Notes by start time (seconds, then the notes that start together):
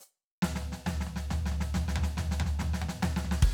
0.04 hi-hat pedal
0.42 snare, floor tom
0.55 snare
0.62 floor tom
0.72 snare
0.86 snare, floor tom
1.01 snare
1.07 floor tom
1.16 snare
1.30 snare, floor tom
1.46 snare
1.52 floor tom
1.60 snare
1.74 snare, floor tom
1.88 snare
1.96 floor tom
2.03 snare
2.17 snare, floor tom
2.31 snare
2.40 floor tom
2.45 snare
2.59 snare, floor tom
2.73 snare
2.77 snare
2.82 floor tom
2.88 snare
3.02 snare, floor tom
3.16 snare
3.24 floor tom
3.31 snare
3.42 kick, crash